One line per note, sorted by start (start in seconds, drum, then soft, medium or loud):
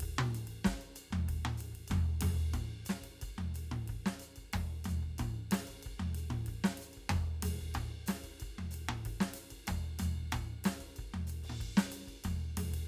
0.01 kick soft
0.01 ride medium
0.19 mid tom loud
0.35 hi-hat pedal medium
0.35 ride medium
0.48 kick soft
0.48 ride medium
0.65 kick soft
0.65 snare loud
0.82 ride bell soft
0.96 hi-hat pedal medium
0.96 ride bell medium
1.11 kick soft
1.11 floor tom loud
1.29 kick soft
1.29 ride medium
1.46 mid tom loud
1.58 hi-hat pedal medium
1.58 ride medium
1.73 kick soft
1.73 ride soft
1.88 kick soft
1.88 floor tom loud
1.88 ride bell medium
2.21 floor tom loud
2.21 hi-hat pedal medium
2.21 ride loud
2.35 kick soft
2.54 kick soft
2.54 mid tom medium
2.54 ride bell medium
2.86 hi-hat pedal medium
2.86 ride bell medium
2.90 snare medium
3.02 kick soft
3.02 ride soft
3.22 kick soft
3.22 ride bell medium
3.39 floor tom medium
3.55 hi-hat pedal medium
3.55 ride medium
3.72 kick soft
3.72 mid tom medium
3.88 kick soft
3.88 ride soft
4.06 snare medium
4.20 hi-hat pedal medium
4.20 ride bell medium
4.37 kick soft
4.37 ride bell soft
4.54 kick soft
4.54 ride medium
4.54 floor tom loud
4.85 floor tom loud
4.85 ride bell medium
4.89 hi-hat pedal medium
5.03 kick soft
5.19 kick soft
5.19 mid tom loud
5.19 ride bell medium
5.52 snare loud
5.52 hi-hat pedal medium
5.52 ride medium
5.68 kick soft
5.68 ride bell soft
5.83 kick soft
5.83 ride bell medium
6.00 floor tom medium
6.15 hi-hat pedal medium
6.15 ride medium
6.31 kick soft
6.31 mid tom loud
6.47 kick soft
6.47 ride medium
6.65 snare loud
6.78 hi-hat pedal medium
6.78 ride medium
6.94 kick soft
6.94 ride bell soft
7.10 ride bell medium
7.10 floor tom loud
7.16 kick soft
7.43 floor tom medium
7.43 hi-hat pedal medium
7.43 ride loud
7.61 kick soft
7.75 kick soft
7.75 mid tom medium
7.75 ride bell medium
8.07 snare medium
8.07 hi-hat pedal medium
8.07 ride medium
8.24 kick soft
8.24 ride bell soft
8.41 kick soft
8.41 ride bell medium
8.59 floor tom medium
8.72 hi-hat pedal medium
8.72 ride medium
8.89 kick soft
8.89 mid tom loud
9.06 kick soft
9.06 ride medium
9.21 snare medium
9.34 hi-hat pedal medium
9.34 ride medium
9.51 kick soft
9.51 ride bell medium
9.68 kick soft
9.68 ride bell medium
9.68 floor tom loud
10.00 floor tom loud
10.00 hi-hat pedal medium
10.00 ride bell medium
10.17 kick soft
10.33 kick soft
10.33 mid tom loud
10.33 ride bell medium
10.65 snare loud
10.65 hi-hat pedal medium
10.65 ride medium
10.81 kick soft
10.81 ride bell soft
10.97 kick soft
10.97 ride bell soft
11.14 floor tom medium
11.28 hi-hat pedal medium
11.28 ride medium
11.43 kick soft
11.43 ride medium
11.50 mid tom medium
11.61 kick soft
11.61 ride soft
11.78 snare loud
11.92 hi-hat pedal medium
11.92 ride medium
12.08 kick soft
12.08 ride bell soft
12.25 kick soft
12.25 floor tom medium
12.25 ride bell medium
12.58 floor tom medium
12.58 hi-hat pedal medium
12.58 ride loud
12.72 kick soft
12.72 ride medium